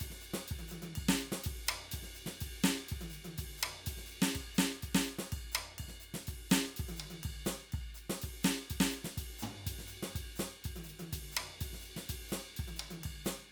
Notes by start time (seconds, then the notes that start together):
0.01 kick, ride
0.08 kick, snare
0.22 hi-hat pedal, ride
0.34 snare
0.48 kick, ride
0.58 kick, high tom
0.69 hi-hat pedal, high tom
0.83 high tom
0.96 kick, ride bell
1.04 kick
1.09 snare
1.18 hi-hat pedal, ride
1.33 snare
1.44 kick, ride
1.54 kick
1.67 hi-hat pedal, floor tom
1.92 kick, ride
2.03 snare
2.15 hi-hat pedal, ride
2.27 snare
2.41 kick, ride
2.49 kick
2.64 snare, hi-hat pedal
2.89 kick, ride
2.99 kick, high tom
3.11 hi-hat pedal, ride
3.25 high tom
3.39 kick, ride
3.45 kick
3.59 hi-hat pedal
3.64 floor tom
3.87 kick, ride
3.94 kick
3.98 snare
4.07 hi-hat pedal
4.11 ride
4.23 snare
4.36 kick, ride bell
4.55 snare, hi-hat pedal
4.83 kick, ride
4.95 snare
5.03 hi-hat pedal
5.07 ride
5.19 snare
5.33 kick, ride bell
5.40 kick
5.53 hi-hat pedal, floor tom
5.79 kick, ride bell
5.89 snare
6.01 hi-hat pedal, ride
6.15 snare
6.28 kick, ride
6.35 kick
6.50 snare, hi-hat pedal
6.77 kick, ride
6.87 kick, high tom
6.97 hi-hat pedal, high tom
7.11 high tom
7.24 kick, ride bell
7.33 kick
7.46 snare, hi-hat pedal
7.73 kick, ride bell
7.82 kick
7.95 hi-hat pedal, ride
8.10 snare
8.22 kick, ride
8.30 kick
8.44 snare, hi-hat pedal
8.71 kick, ride
8.77 kick, snare
8.91 hi-hat pedal, ride
9.05 snare
9.18 kick, ride
9.24 kick
9.39 floor tom, hi-hat pedal
9.67 kick, ride
9.73 kick
9.79 snare
9.88 hi-hat pedal
9.92 ride
10.03 snare
10.16 kick, ride
10.22 kick
10.37 snare, hi-hat pedal
10.65 kick, ride
10.72 kick
10.77 high tom
10.84 hi-hat pedal
10.89 ride
11.00 open hi-hat, high tom
11.13 kick, ride
11.20 kick
11.33 hi-hat pedal
11.37 floor tom
11.61 kick, ride
11.69 kick
11.74 snare
11.81 hi-hat pedal
11.86 ride
11.97 snare
12.10 kick, ride
12.16 kick
12.30 snare, hi-hat pedal
12.57 kick, ride
12.67 kick, high tom
12.77 hi-hat pedal, high tom
12.91 high tom
13.04 kick, ride bell
13.12 kick
13.26 snare, hi-hat pedal